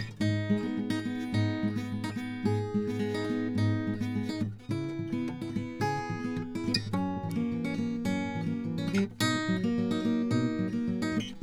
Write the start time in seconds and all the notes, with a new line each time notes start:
0.00 E2
0.21 G#2 D#4
0.50 G#3
0.59 D#4
0.64 B3
0.78 G#3
0.91 D#4
1.00 D#4
1.07 B3
1.33 G#2 D#4
1.64 G#3
1.68 D#4
1.77 B3
1.93 G#3
2.04 D#4
2.17 B3 D#4
2.44 G#2 G#4
2.75 G#3
2.89 B3
3.00 G#3
3.15 D#4
3.25 D#4
3.31 B3
3.56 G#2 D#4
3.88 G#3
3.94 D#4
4.02 B3
4.16 G#3
4.30 D#4
4.70 C#3 B3 E4
5.14 B3
5.42 E4
5.57 B3
5.81 C#3 G#4
6.25 B3
6.56 E4
6.94 F#2 B3 C#4
7.24 E3
7.29 C#4
7.37 A#3
7.53 E3
7.65 C#4
7.75 C#4
7.80 A#3
8.05 F#2 C#4
8.32 C#4
8.36 E3
8.48 A#3
8.66 E3
8.95 G3
9.21 B2 B3 D#4
9.49 F#3
9.57 D#4
9.65 A#3
9.79 F#3
9.91 D#4
10.06 A#3
10.31 B2 D#4
10.60 F#3
10.69 D#4
10.74 A#3
10.89 F#3
11.03 D#4
11.18 G#3 B3